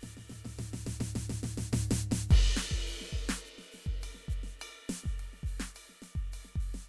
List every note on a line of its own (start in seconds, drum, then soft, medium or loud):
0.01 snare soft
0.01 floor tom soft
0.01 hi-hat pedal medium
0.17 snare soft
0.17 floor tom soft
0.28 snare soft
0.28 hi-hat pedal soft
0.32 floor tom soft
0.45 snare soft
0.45 floor tom soft
0.56 snare soft
0.56 floor tom medium
0.56 hi-hat pedal medium
0.74 snare soft
0.74 floor tom medium
0.85 snare medium
0.85 floor tom medium
0.85 hi-hat pedal soft
1.01 snare medium
1.01 floor tom medium
1.15 snare medium
1.15 floor tom medium
1.15 hi-hat pedal soft
1.30 snare medium
1.30 floor tom medium
1.44 snare medium
1.44 floor tom medium
1.44 hi-hat pedal medium
1.58 snare medium
1.58 floor tom medium
1.72 snare medium
1.72 floor tom loud
1.72 hi-hat pedal medium
1.92 snare medium
1.92 floor tom loud
2.00 hi-hat pedal medium
2.12 snare medium
2.12 floor tom medium
2.29 kick loud
2.29 hi-hat pedal medium
2.29 ride loud
2.57 snare medium
2.57 hi-hat pedal soft
2.72 kick medium
2.87 hi-hat pedal medium
2.87 ride soft
3.02 snare soft
3.13 kick soft
3.13 hi-hat pedal medium
3.13 ride bell soft
3.28 snare medium
3.28 ride soft
3.46 hi-hat pedal medium
3.46 ride medium
3.59 snare soft
3.72 snare soft
3.72 hi-hat pedal medium
3.72 ride soft
3.84 kick soft
3.84 snare soft
3.84 ride soft
4.02 hi-hat pedal soft
4.02 ride bell medium
4.15 snare soft
4.29 kick soft
4.29 hi-hat pedal medium
4.29 ride soft
4.44 snare soft
4.44 ride soft
4.60 hi-hat pedal medium
4.60 ride bell loud
4.89 snare medium
4.89 hi-hat pedal soft
4.89 ride medium
5.04 kick soft
5.04 snare soft
5.18 hi-hat pedal soft
5.18 ride medium
5.34 snare soft
5.44 kick soft
5.44 hi-hat pedal medium
5.44 ride soft
5.60 snare medium
5.60 ride soft
5.75 hi-hat pedal medium
5.75 ride bell medium
5.90 snare soft
6.03 snare soft
6.03 hi-hat pedal medium
6.03 ride medium
6.16 kick soft
6.16 ride soft
6.33 hi-hat pedal medium
6.33 ride bell medium
6.45 snare soft
6.56 kick medium
6.61 hi-hat pedal medium
6.61 ride soft
6.75 snare soft
6.75 ride soft